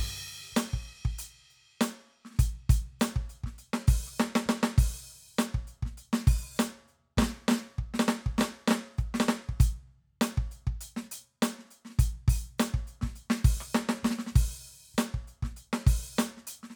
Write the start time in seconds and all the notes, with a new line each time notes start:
0.53 kick
0.57 closed hi-hat, snare
0.73 kick
0.85 closed hi-hat
1.05 kick
1.19 closed hi-hat
1.50 closed hi-hat
1.81 closed hi-hat, snare
2.25 snare
2.31 snare
2.34 snare
2.38 closed hi-hat, kick, snare
2.70 closed hi-hat, kick
3.00 closed hi-hat, snare, hi-hat pedal
3.16 kick
3.29 closed hi-hat
3.44 kick, snare
3.54 snare
3.58 closed hi-hat
3.73 snare
3.88 open hi-hat, kick
4.07 cross-stick
4.19 snare, hi-hat pedal
4.36 snare
4.46 kick, snare
4.63 snare
4.78 open hi-hat, kick
5.29 kick
5.39 open hi-hat, snare, hi-hat pedal
5.54 kick
5.67 closed hi-hat
5.83 kick, snare, crash
5.98 closed hi-hat
6.13 snare
6.27 open hi-hat, kick
6.56 closed hi-hat, snare, hi-hat pedal
6.88 closed hi-hat
7.18 kick, snare
7.22 snare
7.48 snare, hi-hat pedal
7.51 snare
7.79 kick
7.94 snare
8.00 snare
8.08 snare, hi-hat pedal
8.26 kick
8.38 snare
8.41 snare
8.68 snare
8.71 snare
8.98 kick, hi-hat pedal
9.14 snare
9.20 snare
9.27 snare, hi-hat pedal
9.49 kick
9.60 closed hi-hat, kick, hi-hat pedal
10.21 open hi-hat, snare, hi-hat pedal
10.38 kick
10.51 closed hi-hat
10.67 kick
10.81 closed hi-hat
10.97 snare
11.12 closed hi-hat
11.42 closed hi-hat, snare
11.59 snare
11.65 snare
11.71 closed hi-hat
11.85 snare
11.89 snare
11.99 closed hi-hat, kick
12.28 open hi-hat, kick
12.59 closed hi-hat, snare, hi-hat pedal
12.74 kick, snare
12.87 closed hi-hat
13.02 kick, snare
13.04 snare
13.07 snare
13.16 closed hi-hat
13.30 snare
13.45 open hi-hat, kick
13.61 cross-stick
13.75 snare, hi-hat pedal
13.89 snare
14.03 kick, snare
14.11 snare
14.19 snare
14.27 snare
14.32 open hi-hat, kick
14.36 kick
14.94 open hi-hat, kick, snare
15.01 hi-hat pedal
15.14 kick
15.28 closed hi-hat
15.43 kick, snare
15.57 closed hi-hat
15.73 snare
15.87 open hi-hat, kick
16.17 closed hi-hat, snare, hi-hat pedal
16.37 snare
16.47 closed hi-hat
16.63 snare
16.70 snare